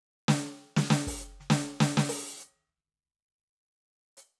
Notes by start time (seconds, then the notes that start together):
0.28 snare
0.46 snare
0.77 snare
0.90 snare
1.07 open hi-hat, kick
1.21 hi-hat pedal
1.40 snare
1.50 snare
1.70 snare
1.80 snare
1.97 snare
2.09 open hi-hat
2.40 hi-hat pedal
4.17 hi-hat pedal